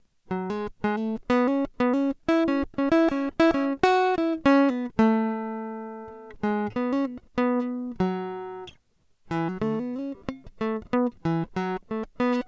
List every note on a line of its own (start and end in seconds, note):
0.32 0.50 F#3
0.51 0.72 G#3
0.85 1.19 A3
1.30 1.48 B3
1.48 1.71 C#4
1.81 1.94 B3
1.94 2.17 C#4
2.29 2.48 E4
2.49 2.68 C#4
2.79 2.94 C#4
2.92 3.11 E4
3.13 3.34 C#4
3.40 3.53 E4
3.55 3.80 C#4
3.84 4.15 F#4
4.15 4.39 E4
4.46 4.69 C#4
4.70 4.93 B3
5.00 6.36 A3
6.44 6.71 G#3
6.77 6.93 B3
6.93 7.05 C#4
7.05 7.20 B3
7.38 7.97 B3
8.01 8.70 F#3
9.32 9.50 E3
9.50 9.61 F#3
9.62 9.83 D3
9.62 9.80 A3
9.81 9.97 B3
9.97 10.16 C#4
10.62 10.82 A3
10.94 11.14 B3
11.26 11.49 E3
11.57 11.83 F#3
11.92 12.09 A3
12.21 12.44 B3